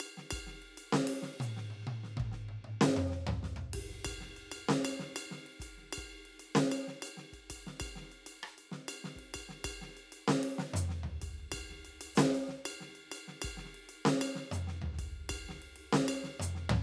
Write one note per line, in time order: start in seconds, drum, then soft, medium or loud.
0.00 ride bell loud
0.17 snare soft
0.30 kick soft
0.30 ride bell loud
0.46 snare soft
0.53 snare soft
0.62 ride soft
0.77 ride bell medium
0.92 snare medium
1.07 ride loud
1.22 snare soft
1.40 hi-hat pedal medium
1.40 high tom loud
1.56 snare soft
1.70 high tom medium
1.81 snare soft
1.87 high tom medium
2.03 snare soft
2.17 kick soft
2.17 high tom loud
2.30 kick soft
2.30 snare soft
2.48 high tom medium
2.64 high tom medium
2.81 snare loud
2.96 mid tom loud
3.08 snare soft
3.08 ride soft
3.27 floor tom medium
3.43 snare soft
3.56 mid tom medium
3.73 kick soft
3.73 ride loud
3.81 kick soft
3.91 snare soft
4.04 kick soft
4.04 ride bell loud
4.12 kick soft
4.20 snare soft
4.26 snare soft
4.36 ride bell soft
4.51 ride bell loud
4.68 snare medium
4.85 ride bell loud
4.99 snare soft
5.16 hi-hat pedal medium
5.16 ride bell loud
5.31 snare soft
5.42 snare soft
5.46 ride soft
5.60 kick soft
5.60 hi-hat pedal soft
5.60 ride bell medium
5.77 snare soft
5.81 snare soft
5.85 snare soft
5.88 snare soft
5.90 snare soft
5.90 ride bell loud
5.97 kick soft
6.25 ride soft
6.39 ride bell medium
6.55 snare loud
6.71 ride bell loud
6.87 snare soft
7.02 hi-hat pedal medium
7.02 ride bell loud
7.17 snare soft
7.32 kick soft
7.32 ride bell soft
7.50 kick soft
7.50 ride bell loud
7.66 snare soft
7.80 kick soft
7.80 ride bell loud
7.86 kick soft
7.95 snare soft
8.01 snare soft
8.05 snare soft
8.08 snare soft
8.08 ride bell soft
8.26 ride bell medium
8.43 cross-stick medium
8.47 hi-hat pedal soft
8.58 ride bell medium
8.71 snare soft
8.88 hi-hat pedal medium
8.88 ride bell loud
9.04 snare soft
9.16 kick soft
9.16 ride soft
9.34 kick soft
9.34 ride bell loud
9.49 snare soft
9.64 kick soft
9.64 ride bell loud
9.81 snare soft
9.87 snare soft
9.94 cross-stick soft
9.94 ride bell soft
10.12 ride bell medium
10.28 snare loud
10.43 ride medium
10.58 snare medium
10.73 hi-hat pedal loud
10.73 mid tom loud
10.89 snare soft
11.03 floor tom medium
11.21 kick soft
11.21 ride bell medium
11.38 snare soft
11.52 kick soft
11.52 ride bell loud
11.70 snare soft
11.74 snare soft
11.85 ride bell medium
12.01 ride bell loud
12.15 snare loud
12.15 hi-hat pedal loud
12.34 ride bell medium
12.48 snare soft
12.65 ride bell loud
12.70 hi-hat pedal soft
12.80 snare soft
12.88 snare soft
12.93 snare soft
12.93 ride bell soft
12.98 snare soft
13.01 snare soft
13.04 snare soft
13.11 hi-hat pedal medium
13.11 ride bell loud
13.28 snare soft
13.42 kick soft
13.42 ride bell loud
13.50 kick soft
13.57 snare soft
13.64 snare soft
13.74 ride medium
13.89 ride bell medium
14.05 snare loud
14.21 ride bell loud
14.35 snare soft
14.51 hi-hat pedal medium
14.51 mid tom loud
14.67 snare soft
14.81 floor tom medium
14.93 snare soft
14.98 kick soft
14.98 ride bell medium
15.07 kick soft
15.19 snare soft
15.29 kick soft
15.29 ride bell loud
15.49 snare soft
15.54 snare soft
15.62 ride medium
15.76 ride medium
15.92 snare loud
16.08 ride bell loud
16.23 snare soft
16.39 hi-hat pedal loud
16.39 mid tom loud
16.55 snare soft
16.69 floor tom loud